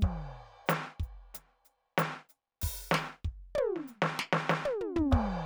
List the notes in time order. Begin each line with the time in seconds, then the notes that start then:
0.01 kick, hi-hat pedal, crash
0.66 closed hi-hat, snare, hi-hat pedal
1.00 closed hi-hat, kick
1.34 closed hi-hat, snare
1.65 hi-hat pedal
1.98 closed hi-hat, snare
2.29 closed hi-hat, hi-hat pedal
2.62 open hi-hat, kick
2.91 snare
2.94 snare
3.25 kick
3.55 high tom
3.58 high tom
3.76 snare
3.88 hi-hat pedal
4.02 snare
4.19 snare
4.33 snare
4.50 snare, hi-hat pedal
4.65 high tom
4.81 mid tom
4.96 kick, floor tom
5.12 kick, crash